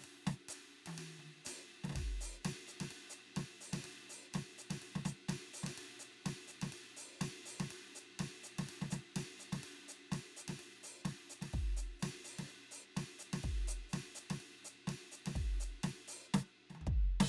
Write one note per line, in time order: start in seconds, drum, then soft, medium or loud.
0.01 hi-hat pedal soft
0.01 ride medium
0.27 snare medium
0.49 hi-hat pedal loud
0.49 ride medium
0.86 high tom medium
0.86 ride medium
0.94 hi-hat pedal soft
0.98 ride medium
1.20 floor tom soft
1.45 hi-hat pedal loud
1.45 ride loud
1.84 snare soft
1.84 ride medium
1.90 snare soft
1.90 hi-hat pedal soft
1.93 kick soft
1.93 snare soft
1.93 ride loud
1.97 snare soft
2.21 hi-hat pedal medium
2.43 snare soft
2.43 hi-hat pedal soft
2.43 ride loud
2.68 hi-hat pedal medium
2.81 snare soft
2.81 ride loud
2.91 ride medium
3.10 hi-hat pedal medium
3.35 snare soft
3.35 hi-hat pedal soft
3.35 ride loud
3.61 hi-hat pedal medium
3.73 snare soft
3.73 ride loud
3.84 snare soft
3.84 hi-hat pedal soft
3.84 ride medium
4.10 hi-hat pedal medium
4.33 snare soft
4.33 hi-hat pedal soft
4.33 ride loud
4.58 hi-hat pedal medium
4.70 snare soft
4.70 ride loud
4.81 hi-hat pedal soft
4.81 ride medium
4.96 snare soft
5.05 snare medium
5.05 hi-hat pedal medium
5.29 snare medium
5.29 ride loud
5.54 hi-hat pedal medium
5.63 snare soft
5.63 ride loud
5.76 hi-hat pedal soft
5.76 ride medium
6.00 hi-hat pedal medium
6.22 snare soft
6.22 hi-hat pedal soft
6.26 ride loud
6.48 hi-hat pedal medium
6.62 snare soft
6.62 ride loud
6.71 hi-hat pedal soft
6.71 ride medium
6.97 hi-hat pedal medium
7.21 snare soft
7.21 ride loud
7.46 hi-hat pedal medium
7.60 snare soft
7.60 ride loud
7.70 hi-hat pedal soft
7.70 ride medium
7.95 hi-hat pedal medium
8.19 snare soft
8.19 hi-hat pedal soft
8.19 ride loud
8.44 hi-hat pedal medium
8.59 snare soft
8.59 ride medium
8.67 hi-hat pedal soft
8.67 ride medium
8.82 snare soft
8.91 snare soft
8.91 hi-hat pedal loud
9.14 snare soft
9.14 hi-hat pedal soft
9.14 ride loud
9.40 hi-hat pedal medium
9.53 snare soft
9.53 ride medium
9.63 hi-hat pedal soft
9.63 ride medium
9.89 hi-hat pedal medium
10.12 snare soft
10.12 hi-hat pedal soft
10.12 ride medium
10.37 hi-hat pedal medium
10.48 snare soft
10.48 ride loud
10.60 hi-hat pedal soft
10.60 ride medium
10.84 hi-hat pedal medium
11.05 snare soft
11.05 hi-hat pedal soft
11.05 ride medium
11.30 hi-hat pedal medium
11.42 snare soft
11.42 ride medium
11.52 kick soft
11.52 hi-hat pedal soft
11.52 ride medium
11.77 hi-hat pedal medium
12.00 snare soft
12.00 hi-hat pedal soft
12.00 ride loud
12.25 hi-hat pedal medium
12.39 snare soft
12.39 ride medium
12.48 hi-hat pedal soft
12.71 hi-hat pedal medium
12.95 snare soft
12.95 hi-hat pedal soft
12.95 ride loud
13.19 hi-hat pedal medium
13.33 snare soft
13.33 ride loud
13.43 kick soft
13.43 hi-hat pedal soft
13.43 ride medium
13.68 hi-hat pedal loud
13.89 snare soft
13.89 hi-hat pedal soft
13.94 ride loud
14.15 hi-hat pedal loud
14.30 snare soft
14.30 ride medium
14.39 hi-hat pedal soft
14.39 ride medium
14.65 hi-hat pedal medium
14.88 snare soft
14.88 hi-hat pedal soft
14.88 ride loud
15.12 hi-hat pedal medium
15.26 snare soft
15.26 ride medium
15.35 kick soft
15.35 hi-hat pedal soft
15.35 ride medium
15.60 hi-hat pedal medium
15.83 snare medium
15.83 hi-hat pedal soft
15.83 ride loud
16.08 hi-hat pedal loud
16.34 snare loud
16.70 snare soft
16.75 high tom soft
16.81 floor tom medium
16.87 kick medium
17.21 snare loud
17.21 crash loud